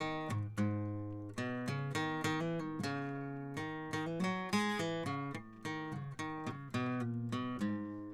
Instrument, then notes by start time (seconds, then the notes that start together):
acoustic guitar
0.01 D#3
0.31 G#2
0.58 G#2
1.38 B2
1.68 C#3
1.96 D#3
2.25 D#3
2.42 E3
2.60 D#3
2.84 C#3
3.57 D#3
3.94 D#3
4.08 E3
4.21 F#3
4.53 G#3
4.80 E3
5.07 C#3
5.66 D#3
5.93 C#3
6.20 D#3
6.47 C#3
6.75 B2
7.01 A#2
7.33 B2
7.62 G#2